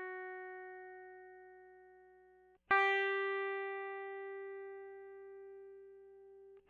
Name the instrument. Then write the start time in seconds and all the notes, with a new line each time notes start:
electric guitar
2.71 G4